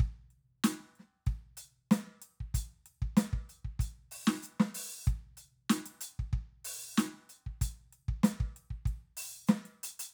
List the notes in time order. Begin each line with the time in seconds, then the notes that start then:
0.01 kick
0.32 closed hi-hat
0.65 closed hi-hat, snare
0.97 snare, closed hi-hat
1.28 kick, closed hi-hat
1.58 open hi-hat
1.92 open hi-hat, snare, hi-hat pedal
2.23 closed hi-hat
2.42 kick
2.56 closed hi-hat, kick
2.87 closed hi-hat
3.03 kick
3.18 closed hi-hat, snare
3.34 kick
3.51 closed hi-hat
3.66 kick
3.81 closed hi-hat, kick
4.13 open hi-hat
4.28 snare
4.44 hi-hat pedal
4.61 snare
4.76 open hi-hat
5.07 kick, closed hi-hat, hi-hat pedal
5.38 closed hi-hat
5.71 closed hi-hat, snare
5.87 closed hi-hat
6.02 closed hi-hat
6.20 kick
6.34 kick
6.66 open hi-hat
6.98 closed hi-hat, snare, hi-hat pedal
7.31 closed hi-hat
7.48 kick
7.63 closed hi-hat, kick
7.94 closed hi-hat
8.10 kick
8.25 closed hi-hat, snare
8.41 kick
8.58 closed hi-hat
8.72 kick
8.87 kick, closed hi-hat
9.18 open hi-hat
9.49 snare, closed hi-hat, hi-hat pedal
9.67 closed hi-hat
9.84 closed hi-hat
10.01 closed hi-hat